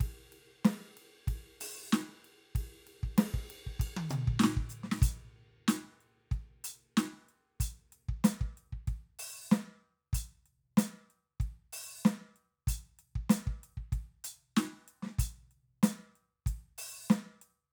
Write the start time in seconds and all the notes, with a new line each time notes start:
0.01 kick, ride
0.33 ride
0.66 snare, ride
0.98 ride
1.28 kick, ride
1.61 open hi-hat, ride
1.93 snare, hi-hat pedal, ride
2.25 ride
2.56 kick, ride
2.88 ride
3.04 kick
3.18 snare, hi-hat pedal, ride
3.35 kick
3.48 hi-hat pedal, ride
3.67 kick
3.80 kick, ride bell
3.97 high tom
4.10 hi-hat pedal, mid tom
4.28 kick
4.40 snare, hi-hat pedal
4.44 snare
4.58 kick
4.70 hi-hat pedal
4.84 snare
4.92 snare
5.03 closed hi-hat, kick
5.69 closed hi-hat, snare
6.01 closed hi-hat
6.32 kick, closed hi-hat
6.65 open hi-hat
6.98 snare, hi-hat pedal
7.29 closed hi-hat
7.61 closed hi-hat, kick
7.93 closed hi-hat
8.09 kick
8.25 closed hi-hat, snare
8.42 kick
8.58 closed hi-hat
8.73 kick
8.88 kick, closed hi-hat
9.20 open hi-hat
9.52 open hi-hat, snare, hi-hat pedal
10.14 closed hi-hat, kick
10.46 closed hi-hat
10.78 closed hi-hat, snare
11.11 closed hi-hat
11.41 kick, closed hi-hat
11.73 open hi-hat
12.06 open hi-hat, snare, hi-hat pedal
12.37 closed hi-hat
12.68 closed hi-hat, kick
13.00 closed hi-hat
13.16 kick
13.30 closed hi-hat, snare
13.48 kick
13.64 closed hi-hat
13.78 kick
13.93 kick, closed hi-hat
14.25 open hi-hat
14.57 closed hi-hat, snare, hi-hat pedal
14.89 closed hi-hat
15.03 snare
15.07 snare
15.19 closed hi-hat, kick
15.52 closed hi-hat
15.84 closed hi-hat, snare
16.16 closed hi-hat
16.47 kick, closed hi-hat
16.79 open hi-hat
17.11 closed hi-hat, snare, hi-hat pedal
17.42 closed hi-hat